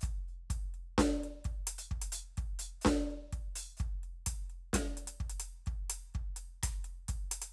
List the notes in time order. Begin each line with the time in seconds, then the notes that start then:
0.01 kick, hi-hat pedal
0.05 closed hi-hat
0.28 closed hi-hat
0.50 kick, closed hi-hat
0.74 closed hi-hat
0.98 closed hi-hat, kick, snare
1.24 closed hi-hat
1.45 kick, closed hi-hat
1.67 closed hi-hat
1.79 closed hi-hat
1.91 kick
2.02 closed hi-hat
2.12 closed hi-hat
2.38 kick, closed hi-hat
2.59 closed hi-hat
2.82 snare, hi-hat pedal
2.86 kick, closed hi-hat
3.11 closed hi-hat
3.33 kick, closed hi-hat
3.56 open hi-hat
3.77 kick, closed hi-hat, hi-hat pedal
4.04 closed hi-hat
4.27 kick, closed hi-hat
4.50 closed hi-hat
4.73 kick, snare, closed hi-hat
4.97 closed hi-hat
5.08 closed hi-hat
5.20 kick
5.30 closed hi-hat
5.40 closed hi-hat
5.66 kick, closed hi-hat
5.90 closed hi-hat
6.14 kick, closed hi-hat
6.37 closed hi-hat
6.63 kick, cross-stick, closed hi-hat
6.85 closed hi-hat
7.09 kick, closed hi-hat
7.32 closed hi-hat
7.42 closed hi-hat